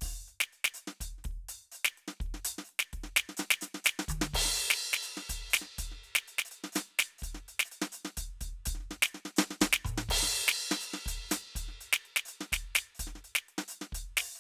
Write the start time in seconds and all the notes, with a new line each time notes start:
0.01 open hi-hat, kick, snare
0.11 snare
0.28 closed hi-hat
0.40 snare
0.53 closed hi-hat
0.64 snare
0.74 closed hi-hat, hi-hat pedal
0.87 snare
1.01 closed hi-hat, kick
1.18 snare
1.24 kick, closed hi-hat
1.31 kick
1.49 open hi-hat
1.72 closed hi-hat, hi-hat pedal
1.85 snare
1.98 closed hi-hat
2.08 snare
2.20 kick, closed hi-hat
2.26 kick
2.34 snare
2.45 closed hi-hat
2.58 snare
2.65 hi-hat pedal
2.69 closed hi-hat
2.79 snare
2.93 kick, closed hi-hat
3.04 snare
3.16 snare
3.29 snare
3.37 snare, hi-hat pedal
3.51 snare
3.61 snare, hi-hat pedal
3.74 snare
3.84 snare, hi-hat pedal
3.99 snare
4.08 kick, hi-hat pedal, high tom
4.21 snare
4.34 kick, crash
4.40 kick
4.45 snare
4.55 closed hi-hat, hi-hat pedal
4.70 snare
4.77 hi-hat pedal
4.93 snare
5.02 hi-hat pedal
5.07 closed hi-hat
5.17 snare
5.29 closed hi-hat, kick
5.50 closed hi-hat, snare, hi-hat pedal
5.62 snare
5.78 closed hi-hat, kick
5.92 snare
6.04 closed hi-hat
6.15 snare
6.28 closed hi-hat
6.38 snare
6.45 hi-hat pedal
6.51 closed hi-hat
6.64 snare
6.72 closed hi-hat, snare, hi-hat pedal
6.99 closed hi-hat, snare
7.18 kick, hi-hat pedal
7.23 closed hi-hat
7.35 snare
7.48 closed hi-hat
7.59 snare
7.65 hi-hat pedal
7.71 closed hi-hat
7.82 snare
7.92 closed hi-hat, hi-hat pedal
8.05 snare
8.17 closed hi-hat, kick
8.41 closed hi-hat, kick
8.46 kick, snare
8.66 closed hi-hat, kick
8.73 kick, snare
8.76 kick
8.80 snare
8.91 snare
9.02 snare, hi-hat pedal
9.14 snare
9.25 snare
9.36 snare, hi-hat pedal
9.51 snare
9.61 kick, snare, hi-hat pedal
9.73 snare
9.85 kick, hi-hat pedal, mid tom
9.98 snare
10.03 hi-hat pedal
10.09 kick, crash
10.15 kick
10.18 kick
10.23 snare
10.35 closed hi-hat
10.48 snare
10.61 closed hi-hat
10.71 snare
10.81 closed hi-hat, hi-hat pedal
10.94 snare
11.06 open hi-hat, kick
11.12 kick
11.29 closed hi-hat, snare, hi-hat pedal
11.55 closed hi-hat, kick
11.63 kick
11.68 snare
11.81 closed hi-hat
11.93 snare
12.05 closed hi-hat
12.16 snare
12.25 closed hi-hat, hi-hat pedal
12.41 snare
12.52 closed hi-hat, kick, snare
12.75 closed hi-hat, snare
12.95 hi-hat pedal
12.99 closed hi-hat, kick
13.07 snare
13.15 snare
13.24 closed hi-hat
13.35 snare
13.48 closed hi-hat
13.58 snare
13.68 closed hi-hat, hi-hat pedal
13.81 snare
13.93 closed hi-hat, kick
14.17 open hi-hat, snare
14.35 hi-hat pedal